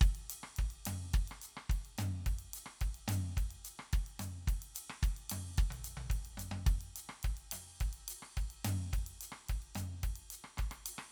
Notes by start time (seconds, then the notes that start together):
0.01 kick, ride
0.15 ride
0.30 hi-hat pedal, ride
0.43 cross-stick
0.56 kick, ride
0.70 ride
0.86 hi-hat pedal, high tom, ride
1.14 kick, ride
1.28 cross-stick, ride
1.42 hi-hat pedal, ride
1.57 cross-stick
1.70 kick, ride
1.85 ride
1.98 hi-hat pedal, high tom, ride
2.26 kick, ride
2.39 ride
2.54 hi-hat pedal, ride
2.66 cross-stick
2.81 kick, ride
2.95 ride
3.08 hi-hat pedal, high tom, ride
3.37 kick, ride
3.51 ride
3.65 hi-hat pedal, ride
3.79 cross-stick
3.93 kick, ride
4.06 ride
4.19 hi-hat pedal, high tom, ride
4.47 kick, ride
4.62 ride
4.68 kick
4.75 hi-hat pedal, ride
4.90 cross-stick
5.03 kick, ride
5.17 ride
5.30 hi-hat pedal, high tom, ride
5.58 kick, ride
5.70 floor tom, ride
5.84 hi-hat pedal, ride
5.97 floor tom
6.10 kick, ride
6.25 ride
6.37 hi-hat pedal, high tom, ride
6.51 high tom
6.66 kick, ride
6.81 ride
6.96 hi-hat pedal, ride
7.09 cross-stick
7.23 kick, ride
7.37 ride
7.52 hi-hat pedal, high tom, ride
7.80 kick, ride
7.93 ride
8.08 hi-hat pedal, ride
8.22 cross-stick
8.37 kick, ride
8.50 ride
8.65 hi-hat pedal, high tom, ride
8.93 kick, ride
9.07 ride
9.21 hi-hat pedal, ride
9.32 cross-stick
9.49 kick, ride
9.62 ride
9.75 hi-hat pedal, high tom, ride
10.03 kick, ride
10.16 ride
10.30 hi-hat pedal, ride
10.44 cross-stick
10.58 kick, cross-stick, ride
10.71 cross-stick, ride
10.86 hi-hat pedal, ride
10.98 cross-stick